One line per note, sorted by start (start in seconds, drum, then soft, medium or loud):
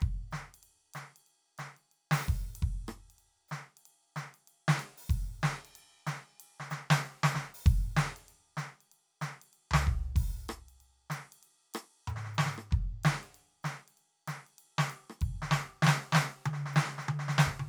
0.01 kick medium
0.01 ride soft
0.31 snare medium
0.31 hi-hat pedal soft
0.36 ride soft
0.54 ride soft
0.63 ride soft
0.94 snare medium
0.94 hi-hat pedal medium
0.94 ride soft
1.16 ride soft
1.27 ride soft
1.58 snare medium
1.58 hi-hat pedal medium
1.58 ride soft
1.77 ride soft
1.92 ride soft
2.11 open hi-hat medium
2.11 snare loud
2.29 kick medium
2.56 ride medium
2.63 kick medium
2.87 cross-stick medium
2.87 hi-hat pedal soft
2.87 ride soft
3.10 ride soft
3.19 ride soft
3.48 snare medium
3.48 hi-hat pedal soft
3.53 ride soft
3.77 ride soft
3.86 ride soft
4.16 snare medium
4.16 hi-hat pedal soft
4.16 ride soft
4.34 ride soft
4.48 ride soft
4.68 snare loud
4.80 ride soft
4.98 open hi-hat medium
5.10 kick medium
5.10 ride medium
5.41 snare loud
5.41 hi-hat pedal soft
5.41 ride soft
5.65 ride soft
5.76 ride soft
6.07 snare medium
6.07 hi-hat pedal medium
6.07 ride soft
6.40 ride medium
6.60 snare medium
6.71 snare medium
6.71 hi-hat pedal medium
6.91 snare loud
7.04 snare soft
7.04 hi-hat pedal soft
7.24 snare loud
7.31 hi-hat pedal soft
7.35 kick soft
7.35 snare medium
7.54 open hi-hat medium
7.66 kick loud
7.66 ride medium
7.96 snare loud
7.96 hi-hat pedal soft
7.96 ride soft
8.17 ride soft
8.29 ride soft
8.57 snare medium
8.57 hi-hat pedal soft
8.57 ride soft
8.81 ride soft
8.92 ride soft
9.21 snare medium
9.21 hi-hat pedal soft
9.21 ride soft
9.42 ride soft
9.53 ride soft
9.71 snare loud
9.71 floor tom loud
9.76 hi-hat pedal medium
9.87 kick medium
10.16 open hi-hat medium
10.16 kick medium
10.16 ride medium
10.46 cross-stick medium
10.46 hi-hat pedal soft
10.46 ride soft
10.69 ride soft
10.81 ride soft
11.10 snare medium
11.10 hi-hat pedal soft
11.10 ride medium
11.33 ride soft
11.43 ride soft
11.74 cross-stick medium
11.74 hi-hat pedal medium
11.74 ride medium
12.08 hi-hat pedal medium
12.08 mid tom medium
12.16 snare soft
12.25 snare soft
12.34 hi-hat pedal medium
12.38 snare loud
12.46 snare medium
12.54 hi-hat pedal soft
12.58 cross-stick medium
12.71 kick medium
12.71 mid tom soft
13.04 snare loud
13.04 hi-hat pedal soft
13.04 ride soft
13.23 ride soft
13.35 ride soft
13.63 snare medium
13.63 hi-hat pedal soft
13.63 ride soft
13.88 ride soft
13.98 ride soft
14.28 snare medium
14.28 hi-hat pedal soft
14.28 ride medium
14.47 ride soft
14.59 ride soft
14.79 snare loud
14.79 hi-hat pedal soft
14.90 ride soft
15.10 cross-stick medium
15.21 kick medium
15.21 ride soft
15.42 snare medium
15.51 snare loud
15.83 snare loud
15.87 snare loud
16.13 snare medium
16.13 hi-hat pedal medium
16.15 snare loud
16.45 hi-hat pedal medium
16.45 high tom loud
16.54 snare soft
16.66 snare medium
16.73 snare loud
16.73 hi-hat pedal medium
16.88 snare soft
16.98 snare medium
16.98 hi-hat pedal soft
17.09 high tom loud
17.19 snare medium
17.29 snare medium
17.29 hi-hat pedal soft
17.38 snare loud
17.46 kick soft
17.46 mid tom medium
17.60 high tom medium